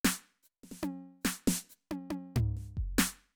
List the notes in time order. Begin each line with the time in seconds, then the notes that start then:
0.04 snare
0.43 hi-hat pedal
0.63 snare
0.71 snare
0.81 hi-hat pedal, high tom
1.21 snare, hi-hat pedal
1.47 snare
1.69 hi-hat pedal
1.91 high tom
2.10 high tom
2.36 floor tom
2.57 snare
2.77 kick
2.98 open hi-hat, snare